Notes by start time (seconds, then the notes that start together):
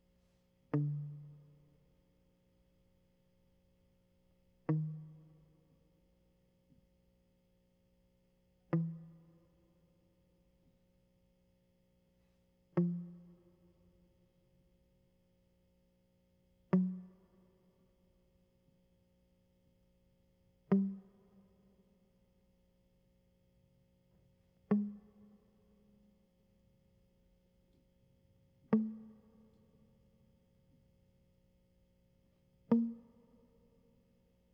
0.75 D3
4.70 D#3
8.74 E3
12.78 F3
16.74 F#3
20.72 G3
24.72 G#3
28.73 A3
32.72 A#3